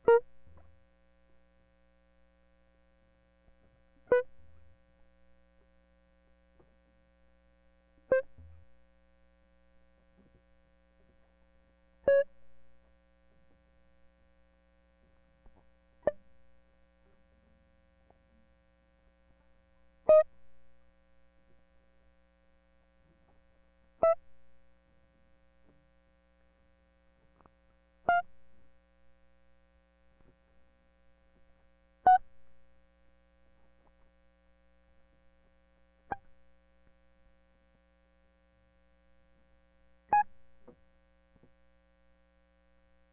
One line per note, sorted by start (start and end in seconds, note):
0.09 0.19 A#4
4.12 4.22 B4
8.12 8.21 C5
12.08 12.23 C#5
16.08 16.15 D5
20.10 20.24 D#5
24.04 24.16 E5
28.09 28.22 F5
32.07 32.18 F#5
36.13 36.19 G5
40.14 40.24 G#5